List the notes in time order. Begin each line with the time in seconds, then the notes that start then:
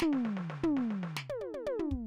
0.01 snare, floor tom
0.13 snare
0.26 snare
0.37 snare
0.51 snare
0.63 floor tom
0.77 snare
0.91 snare
1.04 snare
1.17 snare
1.30 closed hi-hat, high tom
1.41 high tom
1.54 high tom
1.67 high tom
1.79 floor tom
1.92 kick